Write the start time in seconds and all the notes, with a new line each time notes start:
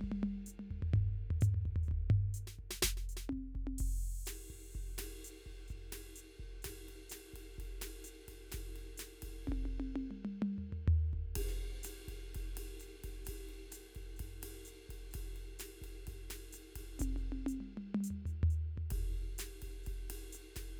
0.01 kick, mid tom
0.09 kick, mid tom
0.23 mid tom
0.36 mid tom
0.46 hi-hat pedal, mid tom
0.59 mid tom
0.71 kick, floor tom
0.76 kick
0.82 floor tom
0.94 kick, floor tom
1.08 floor tom
1.20 floor tom
1.31 floor tom
1.41 hi-hat pedal, floor tom
1.54 floor tom
1.65 kick, floor tom
1.71 kick
1.76 floor tom
1.83 hi-hat pedal
1.88 kick, floor tom
2.10 floor tom
2.34 hi-hat pedal
2.47 snare
2.59 kick
2.64 kick
2.71 snare
2.82 kick, snare
2.97 snare
3.09 hi-hat pedal
3.17 snare
3.29 kick, high tom
3.38 kick
3.55 kick, high tom
3.61 kick
3.67 high tom
3.78 kick, crash
3.87 kick
4.26 snare, hi-hat pedal, ride
4.50 kick, ride
4.55 kick
4.72 kick, hi-hat pedal, ride
4.81 kick
4.98 snare, ride
5.24 hi-hat pedal
5.46 kick
5.51 kick
5.68 kick, hi-hat pedal
5.76 kick
5.92 snare, ride
6.16 hi-hat pedal
6.40 kick
6.45 kick
6.62 kick, snare, hi-hat pedal, ride
6.71 kick
6.89 ride
7.10 snare, hi-hat pedal, ride
7.34 kick, ride
7.53 hi-hat pedal
7.58 kick, ride
7.63 kick
7.81 snare, ride
8.04 hi-hat pedal, ride
8.28 kick, ride
8.49 snare, hi-hat pedal, ride
8.54 kick
8.60 kick
8.76 ride
8.98 snare, hi-hat pedal, ride
9.22 kick, ride
9.28 kick
9.47 kick, high tom
9.52 kick, high tom
9.65 high tom
9.80 high tom
9.96 high tom
10.11 mid tom
10.25 mid tom
10.42 mid tom
10.58 floor tom
10.72 floor tom
10.88 floor tom
11.13 kick
11.19 kick
11.36 kick, ride
11.48 snare
11.83 snare, hi-hat pedal, ride
12.08 kick, ride
12.13 kick
12.35 kick, ride
12.41 kick
12.55 snare, ride
12.80 hi-hat pedal, ride
13.04 kick, ride
13.09 kick
13.25 kick, snare, hi-hat pedal, ride
13.34 kick
13.49 ride
13.72 snare, hi-hat pedal, ride
13.95 kick, ride
14.01 kick
14.16 hi-hat pedal, ride
14.20 kick
14.26 kick
14.42 snare, ride
14.65 hi-hat pedal, ride
14.89 kick, ride
14.94 kick
15.11 snare, hi-hat pedal, ride
15.15 kick
15.21 kick
15.36 ride
15.59 snare, hi-hat pedal, ride
15.82 kick, ride
16.07 kick, ride
16.13 kick
16.30 snare, ride
16.53 hi-hat pedal, ride
16.76 kick, ride
16.81 kick
16.99 kick, hi-hat pedal, high tom
17.02 high tom
17.08 kick
17.16 hi-hat pedal, high tom
17.32 high tom
17.46 hi-hat pedal, high tom
17.60 mid tom
17.77 mid tom
17.95 mid tom
18.01 hi-hat pedal, mid tom
18.10 floor tom
18.26 floor tom, hi-hat pedal
18.43 floor tom
18.50 hi-hat pedal
18.78 floor tom
18.91 kick, ride
19.03 kick
19.38 snare, hi-hat pedal, ride
19.62 kick, ride
19.68 kick
19.83 kick, hi-hat pedal, ride
19.93 kick
20.10 snare, ride
20.33 hi-hat pedal, ride
20.54 kick, snare, hi-hat pedal, ride
20.62 kick